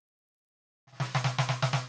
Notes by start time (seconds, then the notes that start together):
0.87 snare
0.93 snare
0.96 snare
1.00 snare
1.15 snare
1.24 snare
1.39 snare
1.49 snare
1.62 snare
1.73 snare